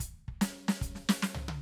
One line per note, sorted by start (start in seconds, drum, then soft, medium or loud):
0.00 closed hi-hat loud
0.00 kick soft
0.28 kick soft
0.41 closed hi-hat loud
0.41 snare loud
0.68 snare loud
0.81 closed hi-hat medium
0.81 kick medium
0.95 snare medium
1.09 snare loud
1.22 snare loud
1.35 floor tom loud
1.48 high tom loud